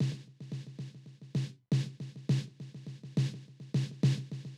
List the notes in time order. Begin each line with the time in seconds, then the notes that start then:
0.00 snare
0.12 snare
0.28 snare
0.40 snare
0.52 snare
0.67 snare
0.79 snare
0.95 snare
1.06 snare
1.22 snare
1.35 snare
1.72 snare
1.86 snare
2.00 snare
2.16 snare
2.29 snare
2.48 snare
2.60 snare
2.75 snare
2.87 snare
3.03 snare
3.17 snare
3.34 snare
3.48 snare
3.60 snare
3.74 snare
3.91 snare
4.03 snare
4.18 snare
4.32 snare
4.45 snare